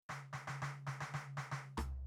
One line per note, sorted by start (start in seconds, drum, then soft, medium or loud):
0.09 snare soft
0.09 high tom soft
0.33 snare soft
0.33 high tom soft
0.47 snare soft
0.47 high tom soft
0.62 snare soft
0.62 high tom medium
0.87 snare soft
0.87 high tom soft
1.00 snare soft
1.00 high tom medium
1.14 snare soft
1.14 high tom medium
1.37 snare soft
1.37 high tom soft
1.51 snare soft
1.51 high tom soft
1.77 cross-stick medium
1.77 floor tom medium